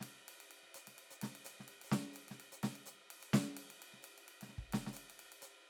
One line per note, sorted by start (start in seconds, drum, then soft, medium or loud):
0.01 snare soft
0.01 ride medium
0.15 snare soft
0.29 ride medium
0.41 ride medium
0.51 ride medium
0.63 snare soft
0.75 hi-hat pedal medium
0.75 ride medium
0.87 snare soft
0.87 ride medium
0.99 ride medium
1.11 hi-hat pedal medium
1.22 snare soft
1.22 ride medium
1.36 ride medium
1.45 hi-hat pedal medium
1.45 ride medium
1.60 snare soft
1.68 ride medium
1.82 hi-hat pedal soft
1.82 ride medium
1.92 snare medium
1.92 ride medium
2.13 hi-hat pedal soft
2.13 ride medium
2.29 snare soft
2.29 ride soft
2.40 ride medium
2.52 hi-hat pedal medium
2.64 snare medium
2.64 ride medium
2.76 ride soft
2.86 hi-hat pedal medium
2.86 ride soft
3.11 ride medium
3.20 hi-hat pedal soft
3.20 ride medium
3.34 snare loud
3.34 ride medium
3.57 ride medium
3.71 ride medium
3.82 ride medium
3.93 snare soft
4.03 hi-hat pedal soft
4.03 ride medium
4.18 ride soft
4.42 snare soft
4.42 ride medium
4.49 snare soft
4.58 kick soft
4.73 snare medium
4.73 ride medium
4.87 snare soft
4.93 hi-hat pedal medium
4.93 ride medium
5.10 ride medium
5.20 ride medium
5.32 ride medium
5.42 hi-hat pedal medium